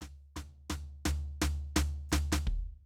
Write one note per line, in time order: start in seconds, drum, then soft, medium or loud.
0.01 snare soft
0.01 floor tom soft
0.36 snare soft
0.36 floor tom medium
0.70 snare medium
0.70 floor tom medium
1.05 snare medium
1.05 floor tom loud
1.42 snare medium
1.42 floor tom loud
1.76 snare loud
1.76 floor tom loud
2.09 snare medium
2.09 floor tom loud
2.09 hi-hat pedal soft
2.32 snare medium
2.32 floor tom loud
2.47 kick medium